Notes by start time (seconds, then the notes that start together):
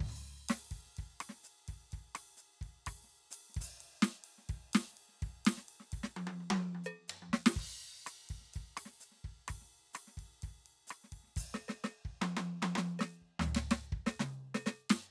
0.01 kick, hi-hat pedal, crash
0.07 kick, crash
0.13 crash
0.49 snare, hi-hat pedal, ride
0.72 kick, ride
0.87 snare
0.95 hi-hat pedal, ride
0.99 kick
1.21 cross-stick, ride
1.30 snare
1.44 hi-hat pedal, ride
1.69 kick, ride
1.74 kick
1.91 kick, hi-hat pedal, ride
1.99 kick
2.16 cross-stick, ride
2.38 hi-hat pedal
2.62 kick, ride
2.87 kick, cross-stick, ride
3.04 snare
3.31 hi-hat pedal, ride
3.50 snare
3.55 kick, ride
3.62 hi-hat pedal
3.81 ride
4.03 snare, ride
4.25 ride
4.39 snare
4.43 snare
4.46 kick, snare, ride
4.56 kick
4.74 snare, ride
4.94 snare
4.98 ride
5.09 snare
5.13 snare
5.15 snare
5.20 kick, snare, ride
5.29 kick
5.41 kick
5.46 snare, ride
5.58 snare
5.69 ride
5.81 snare
5.93 kick, ride
5.99 kick
6.04 snare
6.17 high tom
6.28 high tom
6.41 high tom
6.51 high tom
6.75 high tom
6.84 hi-hat pedal, percussion
7.09 hi-hat pedal, floor tom
7.23 high tom
7.30 kick, snare
7.47 snare
7.57 kick, crash
7.63 kick
8.06 cross-stick, hi-hat pedal, ride
8.30 kick, ride
8.36 kick
8.41 snare
8.45 snare
8.48 snare
8.54 kick, hi-hat pedal, ride
8.62 kick
8.77 cross-stick, ride
8.86 snare
9.01 hi-hat pedal
9.12 snare
9.16 snare
9.25 kick
9.30 kick
9.49 kick, cross-stick, hi-hat pedal, ride
9.56 kick
9.62 snare
9.94 cross-stick, hi-hat pedal, ride
10.08 snare
10.18 kick, ride
10.23 kick
10.42 kick, hi-hat pedal, ride
10.49 kick
10.67 ride
10.88 cross-stick, hi-hat pedal, ride
11.05 snare
11.13 kick, ride
11.24 snare
11.28 snare
11.37 kick, hi-hat pedal, ride
11.44 kick
11.55 snare, percussion
11.69 snare, percussion
11.84 snare, percussion
12.06 kick
12.22 snare, high tom
12.37 snare, high tom
12.63 snare, high tom
12.76 snare, high tom
13.00 snare, percussion
13.22 kick
13.40 snare, floor tom
13.55 snare, floor tom
13.71 snare, floor tom
13.93 kick
14.07 snare, percussion
14.20 snare, mid tom
14.55 snare, percussion
14.67 snare, percussion
14.90 snare, floor tom